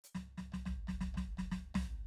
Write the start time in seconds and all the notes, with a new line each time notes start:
0.04 hi-hat pedal
0.15 snare, floor tom
0.38 snare, floor tom
0.52 snare, floor tom
0.66 snare, floor tom
0.87 snare, floor tom
1.01 snare, floor tom
1.14 snare, floor tom
1.37 snare, floor tom
1.52 snare, floor tom
1.75 snare, floor tom